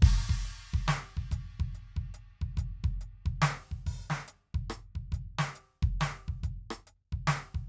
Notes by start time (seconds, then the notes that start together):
0.03 kick, crash
0.30 kick
0.45 closed hi-hat
0.74 kick
0.88 closed hi-hat, snare
1.17 kick
1.32 closed hi-hat, kick
1.60 kick
1.75 closed hi-hat
1.97 kick
2.14 closed hi-hat
2.42 kick
2.58 closed hi-hat, kick
2.84 kick
3.01 closed hi-hat
3.26 kick
3.42 closed hi-hat, snare
3.72 kick
3.87 open hi-hat, kick
4.05 hi-hat pedal
4.10 snare
4.28 closed hi-hat
4.55 kick
4.70 closed hi-hat, cross-stick
4.83 hi-hat pedal
4.96 kick
5.12 closed hi-hat, kick
5.39 snare
5.56 closed hi-hat
5.83 kick
6.01 closed hi-hat, snare
6.28 kick
6.44 closed hi-hat, kick
6.71 cross-stick
6.87 closed hi-hat
7.13 kick
7.28 closed hi-hat, snare
7.55 kick